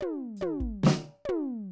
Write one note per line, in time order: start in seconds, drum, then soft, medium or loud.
0.01 floor tom loud
0.01 high tom medium
0.37 hi-hat pedal medium
0.41 floor tom loud
0.41 high tom loud
0.60 kick soft
0.83 snare loud
0.86 snare loud
1.25 closed hi-hat soft
1.25 floor tom loud
1.25 high tom loud